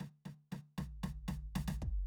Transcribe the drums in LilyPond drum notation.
\new DrumStaff \drummode { \time 4/4 \tempo 4 = 116 <sn tomfh>8 <sn tomfh>8 <tomfh sn>8 <sn tomfh>8 <sn tomfh>8 <sn tomfh>8 <sn tomfh>16 <sn tomfh>16 bd8 | }